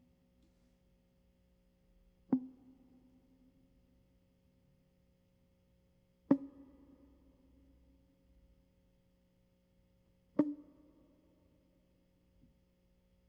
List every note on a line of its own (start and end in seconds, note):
2.33 2.47 C4
6.32 6.46 C#4
10.40 10.51 D4